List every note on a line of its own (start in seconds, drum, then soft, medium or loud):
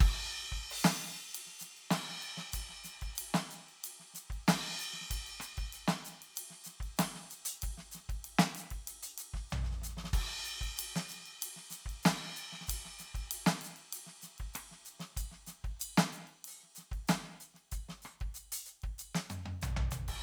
0.01 kick loud
0.01 ride loud
0.52 kick medium
0.71 crash loud
0.85 snare loud
1.15 snare soft
1.35 hi-hat pedal medium
1.35 ride loud
1.47 snare soft
1.60 snare soft
1.60 hi-hat pedal medium
1.60 ride medium
1.77 ride soft
1.91 snare loud
1.91 ride loud
2.09 snare soft
2.21 hi-hat pedal soft
2.21 ride soft
2.37 snare medium
2.53 kick soft
2.53 hi-hat pedal medium
2.53 ride loud
2.69 snare soft
2.84 snare soft
2.84 hi-hat pedal medium
2.84 ride medium
3.02 kick soft
3.02 ride soft
3.16 hi-hat pedal medium
3.16 ride loud
3.34 snare loud
3.51 hi-hat pedal medium
3.51 ride soft
3.69 ride soft
3.84 hi-hat pedal medium
3.84 ride loud
4.00 snare soft
4.14 snare soft
4.14 hi-hat pedal medium
4.14 ride medium
4.30 kick soft
4.30 ride soft
4.47 snare loud
4.47 hi-hat pedal soft
4.47 ride loud
4.80 hi-hat pedal medium
4.80 ride medium
4.94 snare soft
5.01 snare soft
5.11 kick medium
5.11 hi-hat pedal medium
5.11 ride medium
5.27 ride soft
5.40 cross-stick medium
5.40 hi-hat pedal medium
5.58 kick medium
5.58 ride soft
5.73 hi-hat pedal medium
5.73 ride medium
5.88 snare loud
6.05 hi-hat pedal medium
6.05 ride soft
6.22 ride medium
6.36 hi-hat pedal medium
6.36 ride loud
6.51 snare soft
6.64 snare soft
6.64 hi-hat pedal medium
6.64 ride soft
6.80 kick soft
6.80 ride soft
6.97 snare medium
6.97 hi-hat pedal soft
6.97 ride loud
7.15 snare soft
7.31 hi-hat pedal medium
7.31 ride medium
7.46 open hi-hat loud
7.62 kick medium
7.62 hi-hat pedal medium
7.62 ride medium
7.78 snare soft
7.92 snare soft
7.92 hi-hat pedal medium
7.92 ride soft
8.09 kick medium
8.09 ride soft
8.24 hi-hat pedal soft
8.24 ride medium
8.39 snare loud
8.55 hi-hat pedal medium
8.55 ride medium
8.71 kick soft
8.71 ride medium
8.87 hi-hat pedal medium
8.87 ride medium
9.03 open hi-hat medium
9.18 hi-hat pedal medium
9.18 ride medium
9.34 kick medium
9.34 snare soft
9.50 floor tom loud
9.50 hi-hat pedal soft
9.64 snare soft
9.71 snare soft
9.76 snare soft
9.82 kick soft
9.82 snare soft
9.82 hi-hat pedal loud
9.88 snare soft
9.97 snare medium
10.04 snare medium
10.13 kick medium
10.13 hi-hat pedal medium
10.13 ride loud
10.45 hi-hat pedal medium
10.45 ride soft
10.61 kick medium
10.61 ride soft
10.78 hi-hat pedal medium
10.78 ride loud
10.96 snare loud
11.09 hi-hat pedal medium
11.09 ride soft
11.26 ride soft
11.42 hi-hat pedal medium
11.42 ride loud
11.56 snare soft
11.70 snare soft
11.70 hi-hat pedal medium
11.70 ride medium
11.86 kick soft
11.86 ride soft
12.03 snare loud
12.03 hi-hat pedal medium
12.03 ride loud
12.24 snare soft
12.36 hi-hat pedal medium
12.36 ride medium
12.53 snare soft
12.61 snare soft
12.67 kick medium
12.67 hi-hat pedal medium
12.67 ride loud
12.86 snare soft
12.99 snare soft
12.99 hi-hat pedal medium
12.99 ride soft
13.15 kick medium
13.15 ride soft
13.31 hi-hat pedal medium
13.31 ride loud
13.47 snare loud
13.62 hi-hat pedal medium
13.62 ride medium
13.76 ride soft
13.93 hi-hat pedal medium
13.93 ride loud
14.07 snare soft
14.22 snare soft
14.22 hi-hat pedal medium
14.22 ride soft
14.38 kick soft
14.38 ride soft
14.54 cross-stick medium
14.54 hi-hat pedal medium
14.54 ride medium
14.71 snare soft
14.85 hi-hat pedal medium
14.85 ride soft
15.00 snare medium
15.00 ride soft
15.17 kick medium
15.17 hi-hat pedal medium
15.17 ride bell medium
15.32 snare soft
15.47 snare soft
15.47 hi-hat pedal medium
15.47 ride soft
15.64 kick medium
15.64 ride soft
15.80 hi-hat pedal medium
15.80 ride bell loud
15.98 snare loud
16.13 hi-hat pedal medium
16.27 ride soft
16.45 hi-hat pedal medium
16.45 ride medium
16.64 snare soft
16.75 snare soft
16.75 hi-hat pedal medium
16.75 ride soft
16.92 kick medium
16.92 ride soft
17.08 snare loud
17.08 hi-hat pedal medium
17.08 ride bell medium
17.23 snare soft
17.26 snare soft
17.40 hi-hat pedal medium
17.40 ride soft
17.54 snare soft
17.54 ride soft
17.72 kick medium
17.72 hi-hat pedal medium
17.72 ride bell soft
17.89 snare medium
18.02 cross-stick medium
18.02 hi-hat pedal soft
18.02 ride soft
18.21 kick medium
18.21 ride soft
18.35 hi-hat pedal medium
18.35 ride bell soft
18.52 open hi-hat loud
18.66 hi-hat pedal medium
18.66 ride soft
18.82 kick medium
18.82 ride soft
18.99 hi-hat pedal medium
18.99 ride bell medium
19.15 snare loud
19.30 hi-hat pedal medium
19.30 high tom medium
19.46 high tom medium
19.62 floor tom loud
19.62 hi-hat pedal medium
19.77 floor tom loud
19.91 floor tom loud
19.91 hi-hat pedal medium
20.08 kick soft
20.08 ride loud